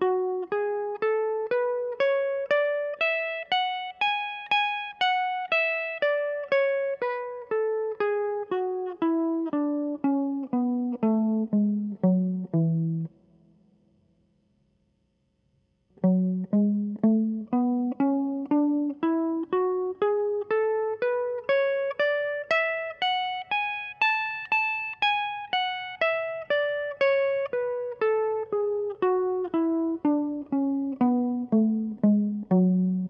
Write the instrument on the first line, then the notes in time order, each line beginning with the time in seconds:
electric guitar
0.02 F#4
0.53 G#4
1.03 A4
1.52 B4
2.01 C#5
2.51 D5
3.01 E5
3.52 F#5
4.02 G#5
4.52 G#5
5.02 F#5
5.52 E5
6.03 D5
6.53 C#5
7.02 B4
7.52 A4
8.01 G#4
8.52 F#4
9.03 E4
9.54 D4
10.05 C#4
10.54 B3
11.04 A3
11.54 G#3
12.05 F#3
12.55 E3
16.05 F3 F#3
16.54 G#3
17.04 A3
17.54 B3
18.01 C#4
18.52 D4
19.04 E4
19.53 F#4
20.02 G#4
20.51 A4
21.03 B4
21.50 C#5
22.00 D5
22.51 E5
23.02 F#5
23.52 G#5
24.02 A5
24.52 A5
25.03 G#5
25.54 F#5
26.02 E5
26.51 D5
27.02 C#5
27.54 B4
28.02 A4
28.53 G#4
29.03 F#4
29.54 E4
30.06 D4
30.53 C#4
31.02 B3
31.54 A3
32.04 G#3 A3
32.52 F#3